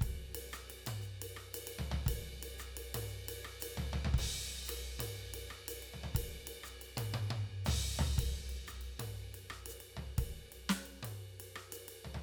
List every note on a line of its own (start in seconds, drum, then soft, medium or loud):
0.01 kick medium
0.01 ride medium
0.35 ride loud
0.52 cross-stick medium
0.52 hi-hat pedal medium
0.70 ride medium
0.86 mid tom loud
0.86 ride bell medium
1.02 hi-hat pedal soft
1.22 ride loud
1.36 cross-stick medium
1.54 hi-hat pedal medium
1.54 ride loud
1.67 ride loud
1.78 kick soft
1.78 floor tom medium
1.91 floor tom loud
2.06 kick medium
2.06 ride loud
2.43 ride loud
2.58 cross-stick medium
2.58 hi-hat pedal medium
2.77 ride loud
2.94 mid tom loud
2.94 ride loud
3.08 hi-hat pedal soft
3.28 ride loud
3.44 cross-stick medium
3.60 hi-hat pedal medium
3.60 ride loud
3.77 floor tom loud
3.93 floor tom loud
4.05 floor tom loud
4.14 kick medium
4.18 ride loud
4.65 cross-stick medium
4.65 hi-hat pedal medium
4.69 ride loud
4.99 mid tom loud
4.99 ride loud
5.17 hi-hat pedal soft
5.34 ride loud
5.50 cross-stick medium
5.68 hi-hat pedal medium
5.68 ride loud
5.82 ride medium
5.94 floor tom medium
6.03 floor tom medium
6.14 kick medium
6.14 hi-hat pedal soft
6.14 ride loud
6.47 ride loud
6.63 cross-stick medium
6.63 hi-hat pedal medium
6.81 ride medium
6.97 mid tom loud
6.97 ride loud
7.12 hi-hat pedal soft
7.12 mid tom loud
7.30 mid tom loud
7.65 floor tom loud
7.65 hi-hat pedal medium
7.65 ride loud
7.99 floor tom loud
8.18 kick medium
8.18 ride loud
8.49 ride medium
8.67 cross-stick medium
8.67 hi-hat pedal medium
8.81 ride medium
8.99 mid tom loud
8.99 ride loud
9.16 hi-hat pedal soft
9.34 ride medium
9.50 cross-stick medium
9.66 hi-hat pedal medium
9.66 ride loud
9.80 ride medium
9.97 floor tom medium
10.18 kick medium
10.18 ride loud
10.52 ride medium
10.69 snare medium
10.69 hi-hat pedal medium
10.85 ride medium
11.03 mid tom loud
11.03 ride medium
11.40 ride medium
11.56 cross-stick medium
11.72 hi-hat pedal medium
11.72 ride loud
11.88 ride medium
12.05 floor tom medium
12.14 floor tom medium